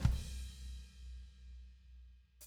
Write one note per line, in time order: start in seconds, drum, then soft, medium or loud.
0.01 snare soft
0.01 high tom soft
0.05 kick medium
0.12 crash medium
2.41 hi-hat pedal medium